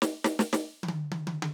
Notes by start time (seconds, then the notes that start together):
0.02 snare
0.24 snare
0.39 snare
0.53 snare
0.83 high tom
0.88 high tom
1.12 high tom
1.27 high tom
1.42 high tom